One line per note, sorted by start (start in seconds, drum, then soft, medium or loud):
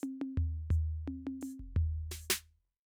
0.00 hi-hat pedal medium
0.00 high tom loud
0.04 closed hi-hat soft
0.21 high tom loud
0.37 floor tom loud
0.70 floor tom loud
0.70 hi-hat pedal soft
1.08 high tom loud
1.27 high tom loud
1.41 hi-hat pedal medium
1.41 high tom medium
1.60 kick soft
1.76 floor tom loud
2.11 snare medium
2.11 hi-hat pedal medium
2.30 snare loud